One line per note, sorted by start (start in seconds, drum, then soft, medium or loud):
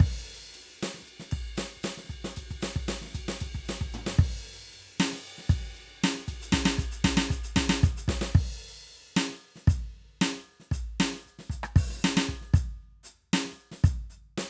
0.01 kick loud
0.01 hi-hat pedal medium
0.01 crash loud
0.53 hi-hat pedal soft
0.53 ride loud
0.83 snare loud
0.83 ride loud
0.95 snare soft
0.99 kick soft
0.99 snare soft
1.06 hi-hat pedal medium
1.06 ride medium
1.20 snare medium
1.32 kick medium
1.32 ride bell loud
1.57 snare loud
1.57 hi-hat pedal medium
1.57 ride loud
1.77 kick soft
1.82 snare loud
1.82 hi-hat pedal medium
1.82 ride loud
1.98 snare medium
2.05 snare soft
2.10 kick soft
2.10 ride medium
2.25 snare loud
2.32 hi-hat pedal soft
2.37 kick soft
2.37 ride loud
2.51 kick medium
2.51 ride medium
2.61 snare loud
2.61 hi-hat pedal medium
2.61 ride loud
2.77 kick medium
2.88 snare loud
2.88 hi-hat pedal medium
2.88 ride loud
3.02 snare medium
3.06 snare medium
3.11 snare soft
3.11 hi-hat pedal medium
3.15 kick medium
3.15 ride loud
3.29 snare loud
3.37 hi-hat pedal soft
3.41 kick medium
3.41 ride loud
3.55 kick medium
3.55 ride medium
3.66 hi-hat pedal medium
3.66 ride loud
3.70 snare loud
3.82 kick medium
3.92 floor tom loud
3.92 hi-hat pedal medium
4.07 snare loud
4.18 kick loud
4.18 hi-hat pedal soft
4.18 crash loud
4.71 hi-hat pedal soft
4.71 ride medium
5.01 snare loud
5.01 ride loud
5.13 snare medium
5.22 hi-hat pedal soft
5.22 ride soft
5.39 snare medium
5.50 kick loud
5.50 ride loud
5.75 hi-hat pedal medium
5.75 ride soft
6.04 snare loud
6.04 ride loud
6.14 snare soft
6.17 snare soft
6.19 snare soft
6.29 kick medium
6.29 ride loud
6.42 closed hi-hat loud
6.53 kick medium
6.53 snare loud
6.66 snare loud
6.79 closed hi-hat loud
6.79 kick medium
6.92 closed hi-hat loud
7.05 kick medium
7.05 snare loud
7.18 snare loud
7.31 closed hi-hat loud
7.31 kick medium
7.44 closed hi-hat loud
7.57 kick medium
7.57 snare loud
7.70 snare loud
7.83 closed hi-hat loud
7.83 kick loud
7.97 closed hi-hat loud
8.09 kick medium
8.09 snare loud
8.22 snare loud
8.32 kick soft
8.32 crash loud
8.36 kick loud
9.17 closed hi-hat loud
9.17 snare loud
9.30 snare soft
9.32 snare soft
9.57 snare soft
9.68 closed hi-hat loud
9.68 kick loud
9.96 closed hi-hat soft
10.22 closed hi-hat loud
10.22 snare loud
10.34 snare soft
10.37 snare soft
10.61 snare soft
10.72 closed hi-hat loud
10.72 kick medium
11.01 closed hi-hat loud
11.01 snare loud
11.14 snare soft
11.17 snare soft
11.23 closed hi-hat soft
11.23 kick soft
11.23 snare soft
11.39 snare medium
11.50 closed hi-hat loud
11.50 kick medium
11.64 cross-stick medium
11.77 open hi-hat loud
11.77 kick loud
11.90 snare soft
11.95 snare soft
11.98 snare soft
12.03 snare loud
12.03 hi-hat pedal medium
12.18 snare loud
12.29 kick medium
12.29 snare soft
12.42 snare soft
12.54 open hi-hat loud
12.54 kick loud
13.04 closed hi-hat loud
13.04 hi-hat pedal medium
13.34 closed hi-hat loud
13.34 snare loud
13.46 snare soft
13.49 snare soft
13.52 kick soft
13.52 snare soft
13.57 closed hi-hat soft
13.57 snare soft
13.72 snare medium
13.85 closed hi-hat loud
13.85 kick loud
14.11 closed hi-hat soft
14.11 hi-hat pedal medium
14.38 closed hi-hat loud
14.38 snare loud